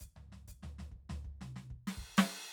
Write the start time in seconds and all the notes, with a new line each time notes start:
0.00 kick, hi-hat pedal
0.16 snare, floor tom
0.32 snare, floor tom
0.48 kick, hi-hat pedal
0.63 snare, floor tom
0.79 snare, floor tom
0.91 kick
1.09 snare, floor tom
1.24 kick
1.41 snare, high tom
1.56 snare, high tom
1.70 kick
1.87 snare, crash
1.97 kick
2.17 snare, crash